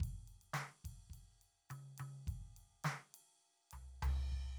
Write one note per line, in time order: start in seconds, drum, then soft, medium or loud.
0.00 kick soft
0.00 ride soft
0.28 ride soft
0.41 ride soft
0.53 snare medium
0.53 hi-hat pedal soft
0.53 ride soft
0.84 kick soft
0.84 ride soft
1.10 kick soft
1.10 ride soft
1.41 ride soft
1.69 hi-hat pedal soft
1.69 high tom soft
1.69 ride soft
1.98 high tom soft
1.98 ride soft
2.27 kick soft
2.27 ride soft
2.56 ride soft
2.84 snare medium
2.84 hi-hat pedal soft
2.84 ride soft
3.14 ride soft
3.71 floor tom soft
3.71 ride soft
4.02 floor tom medium
4.02 hi-hat pedal medium
4.02 ride soft
4.32 kick soft